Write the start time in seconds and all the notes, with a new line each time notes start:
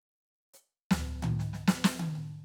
0.54 hi-hat pedal
0.91 snare, floor tom
1.22 mid tom, high tom
1.39 snare
1.53 snare
1.68 snare
1.84 snare
1.99 high tom
2.15 mid tom